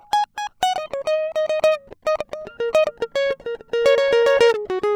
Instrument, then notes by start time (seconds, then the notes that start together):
acoustic guitar
0.14 G#5
0.39 G#5
0.64 F#5
0.80 D#5
0.95 C#5
1.08 D#5
1.37 D#5
1.51 D#5
1.65 D#5
2.08 D#5
2.22 D5
2.34 D#5
2.62 A#4
3.17 C#5
3.48 A#4
3.75 A#4
3.87 C#5
4.00 A#4 C#5
4.14 A#4
4.28 A#4 C#5
4.40 A#4 C#5
4.52 A4
4.71 F#4
4.85 G#4